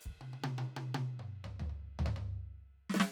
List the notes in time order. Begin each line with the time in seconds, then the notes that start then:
0.01 hi-hat pedal
0.06 kick
0.11 kick
0.21 high tom
0.34 high tom
0.44 high tom
0.58 high tom
0.77 high tom
0.95 high tom
1.20 mid tom
1.45 floor tom
1.60 floor tom
1.70 floor tom
1.99 floor tom
2.06 floor tom
2.16 floor tom
2.90 snare
2.94 cross-stick, snare
3.00 snare